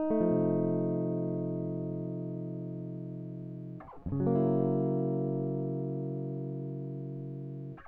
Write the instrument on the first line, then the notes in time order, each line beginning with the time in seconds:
electric guitar
0.00 D#4
0.11 A3
0.22 F3
0.26 C3
4.13 C#3
4.21 F#3
4.27 A#3
4.36 E4